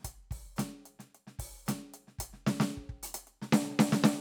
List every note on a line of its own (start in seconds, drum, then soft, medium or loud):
0.01 kick soft
0.01 snare soft
0.01 closed hi-hat loud
0.07 snare soft
0.31 kick soft
0.31 open hi-hat medium
0.56 snare medium
0.56 closed hi-hat loud
0.56 hi-hat pedal medium
0.86 closed hi-hat medium
0.99 snare soft
0.99 closed hi-hat soft
1.15 closed hi-hat soft
1.27 snare soft
1.39 kick soft
1.39 open hi-hat loud
1.66 snare medium
1.66 closed hi-hat loud
1.66 hi-hat pedal medium
1.94 closed hi-hat medium
2.07 snare soft
2.19 kick soft
2.19 closed hi-hat loud
2.33 snare soft
2.47 snare loud
2.60 snare loud
2.77 kick soft
2.89 kick soft
3.03 closed hi-hat loud
3.14 closed hi-hat loud
3.27 closed hi-hat soft
3.42 snare medium
3.53 snare loud
3.65 snare soft
3.71 snare soft
3.75 snare soft
3.79 snare loud
3.92 snare loud
4.04 snare loud